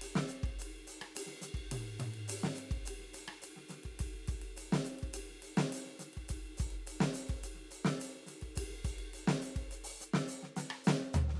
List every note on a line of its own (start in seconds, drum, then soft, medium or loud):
0.01 hi-hat pedal medium
0.01 ride medium
0.15 snare medium
0.28 hi-hat pedal medium
0.28 ride soft
0.43 kick medium
0.43 ride soft
0.59 hi-hat pedal medium
0.59 ride medium
0.87 hi-hat pedal medium
0.87 ride medium
1.01 cross-stick medium
1.01 ride medium
1.15 hi-hat pedal medium
1.15 ride loud
1.26 snare soft
1.41 snare soft
1.41 hi-hat pedal medium
1.41 ride medium
1.54 kick soft
1.54 ride soft
1.71 closed hi-hat soft
1.71 hi-hat pedal medium
1.71 high tom medium
1.71 ride loud
1.98 closed hi-hat soft
1.98 hi-hat pedal medium
1.98 high tom medium
1.98 ride medium
2.13 ride soft
2.28 hi-hat pedal loud
2.28 ride loud
2.43 snare medium
2.55 hi-hat pedal medium
2.55 ride medium
2.71 kick medium
2.71 ride soft
2.85 hi-hat pedal medium
2.85 ride loud
2.98 snare soft
3.13 hi-hat pedal medium
3.13 ride medium
3.27 cross-stick medium
3.27 ride medium
3.42 hi-hat pedal medium
3.42 ride medium
3.56 snare soft
3.68 snare soft
3.68 hi-hat pedal medium
3.68 ride medium
3.83 kick soft
3.83 ride soft
3.99 kick medium
3.99 hi-hat pedal medium
3.99 ride medium
4.13 snare soft
4.27 kick medium
4.27 hi-hat pedal soft
4.27 ride medium
4.41 ride medium
4.56 hi-hat pedal medium
4.56 ride medium
4.72 snare loud
4.84 hi-hat pedal medium
4.84 ride medium
4.98 ride soft
5.02 kick soft
5.13 hi-hat pedal medium
5.13 ride loud
5.29 snare soft
5.42 hi-hat pedal medium
5.42 ride medium
5.57 snare loud
5.57 ride medium
5.72 hi-hat pedal medium
5.72 ride medium
5.85 snare soft
5.99 snare soft
5.99 hi-hat pedal medium
5.99 ride medium
6.13 kick soft
6.13 ride soft
6.28 kick soft
6.28 hi-hat pedal medium
6.28 ride medium
6.57 kick medium
6.57 hi-hat pedal medium
6.57 ride soft
6.70 ride soft
6.86 hi-hat pedal medium
6.86 ride medium
7.00 snare loud
7.13 hi-hat pedal medium
7.13 ride medium
7.29 kick medium
7.29 ride medium
7.43 hi-hat pedal medium
7.43 ride medium
7.54 snare soft
7.70 hi-hat pedal medium
7.70 ride medium
7.85 snare medium
7.85 ride medium
8.00 hi-hat pedal medium
8.00 ride medium
8.15 snare soft
8.26 snare soft
8.26 hi-hat pedal medium
8.26 ride medium
8.41 kick soft
8.41 ride soft
8.55 kick soft
8.55 hi-hat pedal medium
8.55 ride loud
8.69 snare soft
8.84 kick medium
8.84 hi-hat pedal medium
8.84 ride medium
8.98 ride medium
9.13 hi-hat pedal medium
9.13 ride medium
9.27 snare loud
9.41 hi-hat pedal medium
9.41 ride medium
9.56 kick medium
9.56 ride medium
9.71 hi-hat pedal medium
9.71 ride medium
9.84 open hi-hat loud
10.00 hi-hat pedal loud
10.13 snare medium
10.28 hi-hat pedal medium
10.42 snare soft
10.56 snare medium
10.56 hi-hat pedal medium
10.70 cross-stick medium
10.84 snare loud
10.84 hi-hat pedal medium
11.13 floor tom loud
11.13 hi-hat pedal medium
11.28 snare soft
11.34 snare soft